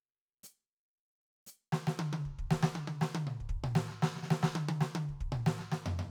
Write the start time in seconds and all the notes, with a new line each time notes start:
0.43 hi-hat pedal
1.46 hi-hat pedal
1.72 snare
1.87 snare
1.99 high tom
2.13 high tom
2.25 kick
2.38 kick
2.47 kick, snare
2.63 snare
2.75 high tom
2.87 high tom
3.01 snare
3.15 high tom
3.27 mid tom
3.40 kick
3.49 kick
3.64 mid tom
3.75 snare
3.88 snare
4.02 snare
4.15 snare
4.22 snare
4.30 snare
4.43 kick, snare
4.55 high tom
4.68 high tom
4.81 snare
4.95 high tom
5.08 kick
5.20 kick
5.32 mid tom
5.46 snare
5.59 snare
5.72 snare
5.86 floor tom
5.99 floor tom